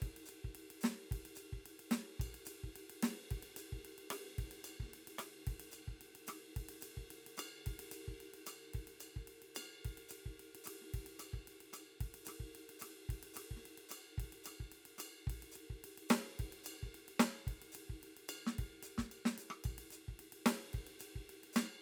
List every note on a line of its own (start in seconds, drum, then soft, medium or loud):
0.01 kick soft
0.01 snare soft
0.01 ride medium
0.16 ride soft
0.26 hi-hat pedal soft
0.26 ride medium
0.44 kick soft
0.55 ride medium
0.70 ride soft
0.81 snare medium
0.81 hi-hat pedal medium
0.81 ride medium
1.08 kick soft
1.08 snare soft
1.12 ride medium
1.19 kick soft
1.25 ride soft
1.35 hi-hat pedal soft
1.35 ride medium
1.53 kick soft
1.66 ride medium
1.79 ride soft
1.91 snare medium
1.91 hi-hat pedal soft
1.91 ride medium
2.20 kick soft
2.20 ride bell medium
2.25 kick soft
2.34 ride soft
2.45 hi-hat pedal medium
2.45 ride medium
2.64 kick soft
2.76 ride medium
2.90 ride medium
3.02 snare medium
3.02 hi-hat pedal soft
3.02 ride medium
3.31 kick soft
3.31 ride medium
3.43 ride medium
3.56 hi-hat pedal medium
3.56 ride medium
3.72 kick soft
3.77 snare soft
3.82 snare soft
3.82 ride medium
3.98 ride soft
4.10 cross-stick medium
4.10 hi-hat pedal soft
4.10 ride loud
4.38 kick soft
4.38 ride medium
4.44 kick soft
4.51 ride medium
4.64 hi-hat pedal soft
4.64 ride bell medium
4.80 kick soft
4.80 snare soft
4.87 snare soft
4.91 snare soft
4.91 ride medium
4.95 snare soft
5.07 ride medium
5.18 cross-stick medium
5.18 hi-hat pedal medium
5.18 ride medium
5.47 kick soft
5.47 ride medium
5.60 ride medium
5.71 hi-hat pedal soft
5.71 ride bell medium
5.88 kick soft
6.01 ride soft
6.15 ride soft
6.27 cross-stick medium
6.27 hi-hat pedal medium
6.27 ride medium
6.56 kick soft
6.56 snare soft
6.56 ride medium
6.69 ride medium
6.81 hi-hat pedal soft
6.81 ride medium
6.97 kick soft
7.11 ride medium
7.27 ride medium
7.37 cross-stick medium
7.37 snare soft
7.37 hi-hat pedal medium
7.37 ride bell loud
7.66 kick soft
7.66 ride medium
7.79 ride medium
7.91 hi-hat pedal soft
7.91 ride medium
8.08 kick soft
8.20 ride soft
8.34 ride soft
8.46 cross-stick soft
8.46 hi-hat pedal medium
8.46 ride bell medium
8.74 kick soft
8.74 ride soft
8.87 ride soft
9.00 hi-hat pedal soft
9.00 ride bell medium
9.16 kick soft
9.27 ride soft
9.42 ride soft
9.55 snare soft
9.55 hi-hat pedal medium
9.55 ride bell loud
9.61 cross-stick soft
9.85 kick soft
9.85 ride medium
9.97 ride soft
10.09 hi-hat pedal medium
10.09 ride medium
10.26 kick soft
10.40 ride soft
10.55 ride medium
10.64 cross-stick soft
10.64 hi-hat pedal medium
10.64 ride medium
10.81 snare soft
10.94 kick soft
10.94 ride medium
11.03 snare soft
11.03 ride medium
11.19 cross-stick soft
11.19 hi-hat pedal medium
11.19 ride bell medium
11.33 kick soft
11.33 cross-stick soft
11.47 ride soft
11.61 ride soft
11.73 cross-stick soft
11.73 hi-hat pedal medium
11.73 ride bell medium
12.01 kick soft
12.01 ride medium
12.14 ride medium
12.25 cross-stick soft
12.25 hi-hat pedal medium
12.25 ride medium
12.40 kick soft
12.55 ride soft
12.69 ride soft
12.79 cross-stick soft
12.79 snare soft
12.79 hi-hat pedal medium
12.79 ride medium
13.09 kick soft
13.09 ride medium
13.23 ride medium
13.34 cross-stick soft
13.34 hi-hat pedal medium
13.34 ride medium
13.51 kick soft
13.56 snare soft
13.66 ride soft
13.78 ride soft
13.89 cross-stick soft
13.89 hi-hat pedal medium
13.89 ride bell medium
14.18 kick soft
14.18 ride medium
14.23 kick soft
14.32 ride soft
14.44 cross-stick soft
14.44 hi-hat pedal medium
14.44 ride bell medium
14.60 kick soft
14.72 ride soft
14.85 ride soft
14.98 cross-stick soft
14.98 snare soft
14.98 hi-hat pedal medium
14.98 ride bell medium
15.27 kick soft
15.27 ride medium
15.33 kick soft
15.42 ride soft
15.52 hi-hat pedal medium
15.52 ride medium
15.70 kick soft
15.84 ride medium
15.98 ride medium
16.09 snare loud
16.09 hi-hat pedal medium
16.09 ride loud
16.39 kick soft
16.39 ride medium
16.52 ride soft
16.64 hi-hat pedal medium
16.64 ride bell medium
16.83 kick soft
16.83 snare soft
16.88 snare soft
16.95 ride soft
17.08 ride soft
17.20 snare loud
17.20 hi-hat pedal medium
17.20 ride bell medium
17.47 kick soft
17.47 ride medium
17.62 ride soft
17.72 hi-hat pedal medium
17.72 ride medium
17.90 kick soft
18.00 snare soft
18.00 ride soft
18.17 ride soft
18.28 hi-hat pedal medium
18.28 ride bell loud
18.47 snare medium
18.59 kick soft
18.59 ride medium
18.83 hi-hat pedal medium
18.83 ride medium
18.98 kick soft
18.98 snare medium
19.11 ride bell medium
19.25 snare medium
19.38 hi-hat pedal soft
19.38 ride medium
19.50 cross-stick medium
19.64 kick soft
19.64 ride bell medium
19.71 kick soft
19.78 ride medium
19.91 hi-hat pedal medium
19.91 ride soft
20.08 kick soft
20.18 snare soft
20.18 ride medium
20.32 ride medium
20.46 snare medium
20.46 hi-hat pedal medium
20.46 ride loud
20.73 kick soft
20.73 snare soft
20.73 ride soft
20.87 snare soft
20.87 ride soft
20.96 snare soft
20.96 hi-hat pedal soft
21.01 ride medium
21.16 kick soft
21.29 ride soft
21.44 ride soft
21.53 snare medium
21.53 hi-hat pedal medium
21.53 ride bell loud